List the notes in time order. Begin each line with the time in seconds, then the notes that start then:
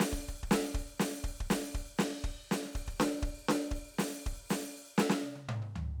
0.00 open hi-hat, snare
0.12 kick
0.22 open hi-hat
0.28 kick
0.43 kick
0.51 open hi-hat, snare
0.74 kick
1.00 open hi-hat, snare
1.23 open hi-hat, kick
1.40 kick
1.50 open hi-hat, snare
1.74 kick
1.98 snare, crash
2.24 kick, open hi-hat
2.51 open hi-hat, snare
2.65 snare
2.70 snare
2.75 open hi-hat, kick
2.88 kick
2.99 open hi-hat, snare
3.06 snare
3.14 snare
3.18 snare
3.21 kick, snare
3.49 open hi-hat, snare
3.54 snare
3.71 open hi-hat, kick
3.99 open hi-hat, snare
4.21 open hi-hat
4.26 kick
4.49 open hi-hat, snare
4.75 open hi-hat
4.98 snare
5.10 snare
5.23 high tom
5.36 high tom
5.49 mid tom
5.62 mid tom
5.76 floor tom